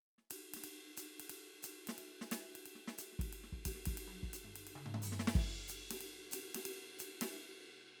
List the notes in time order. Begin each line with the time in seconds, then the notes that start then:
0.18 snare
0.24 snare
0.30 hi-hat pedal, ride
0.54 snare, ride
0.64 ride
0.97 hi-hat pedal, ride
1.20 ride
1.30 ride
1.54 snare
1.62 hi-hat pedal, ride
1.87 snare, ride
1.98 ride
2.21 snare
2.31 snare, hi-hat pedal, ride
2.55 ride
2.66 ride
2.75 snare
2.87 snare
2.98 hi-hat pedal, ride
3.12 snare
3.19 kick, ride
3.33 ride
3.43 snare
3.52 kick
3.65 kick, hi-hat pedal, ride
3.75 snare
3.85 kick, ride
3.97 ride
4.07 high tom
4.23 kick
4.33 hi-hat pedal, ride
4.44 floor tom
4.56 ride
4.67 ride
4.75 mid tom
4.85 floor tom
4.94 floor tom
5.02 hi-hat pedal, high tom
5.12 snare
5.19 snare
5.27 snare
5.35 kick, ride
5.68 hi-hat pedal, ride
5.89 snare, hi-hat pedal, ride
6.01 ride
6.26 snare
6.31 hi-hat pedal, ride
6.51 hi-hat pedal, ride
6.55 snare
6.65 ride
6.90 snare
6.99 hi-hat pedal, ride
7.21 snare, ride